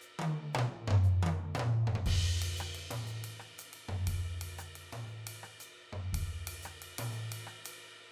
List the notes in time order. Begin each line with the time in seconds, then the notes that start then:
0.01 hi-hat pedal
0.19 high tom
0.21 high tom
0.53 hi-hat pedal, mid tom
0.58 mid tom
0.87 floor tom
0.90 floor tom
1.03 hi-hat pedal
1.22 high tom
1.26 high tom
1.54 hi-hat pedal, mid tom
1.59 mid tom
1.87 floor tom
1.95 floor tom
2.06 kick, ride
2.42 ride
2.57 cross-stick, hi-hat pedal
2.74 ride
2.90 mid tom, ride
3.07 hi-hat pedal
3.24 ride
3.39 cross-stick
3.58 hi-hat pedal, ride
3.73 ride
3.88 floor tom
4.07 kick, ride
4.41 ride
4.58 cross-stick, hi-hat pedal
4.75 ride
4.92 mid tom, ride bell
5.07 hi-hat pedal
5.27 ride
5.43 cross-stick
5.60 hi-hat pedal, ride bell
5.92 floor tom
6.13 kick, ride
6.47 ride
6.62 cross-stick, hi-hat pedal
6.82 ride
6.98 mid tom, ride
7.12 hi-hat pedal
7.32 ride
7.47 cross-stick
7.64 hi-hat pedal, ride